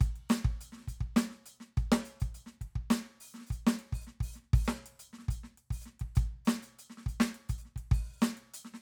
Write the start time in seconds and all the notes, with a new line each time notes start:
0.01 closed hi-hat, kick
0.16 closed hi-hat
0.30 closed hi-hat, snare
0.45 kick
0.61 closed hi-hat
0.72 snare
0.77 snare
0.80 snare
0.83 snare
0.88 closed hi-hat, kick
1.01 kick, closed hi-hat
1.16 closed hi-hat, snare
1.30 snare
1.32 snare
1.46 closed hi-hat
1.60 snare
1.77 closed hi-hat, kick
1.92 snare
2.05 closed hi-hat
2.20 closed hi-hat, kick
2.35 closed hi-hat
2.46 snare
2.61 kick, closed hi-hat
2.76 kick
2.90 open hi-hat, snare
3.05 snare
3.20 open hi-hat
3.34 snare
3.38 snare
3.41 snare
3.47 kick, snare, hi-hat pedal
3.52 closed hi-hat
3.67 snare
3.79 closed hi-hat
3.93 open hi-hat, kick
4.02 hi-hat pedal
4.07 snare
4.21 open hi-hat, kick
4.34 snare, hi-hat pedal
4.42 snare
4.54 open hi-hat, kick
4.65 snare, hi-hat pedal
4.86 closed hi-hat
5.00 closed hi-hat
5.13 snare
5.19 snare
5.23 snare
5.29 closed hi-hat, kick
5.44 snare
5.58 closed hi-hat
5.71 open hi-hat, kick
5.81 hi-hat pedal
5.86 snare
6.00 kick, closed hi-hat
6.16 closed hi-hat, kick
6.45 snare, hi-hat pedal
6.63 closed hi-hat, snare
6.79 closed hi-hat
6.90 snare
6.98 snare
7.01 snare
7.06 closed hi-hat, kick
7.20 snare
7.35 closed hi-hat
7.47 open hi-hat, kick, snare
7.58 hi-hat pedal
7.65 snare
7.76 kick, closed hi-hat
7.92 open hi-hat, kick
8.22 snare, hi-hat pedal
8.37 closed hi-hat
8.54 closed hi-hat
8.65 snare
8.74 snare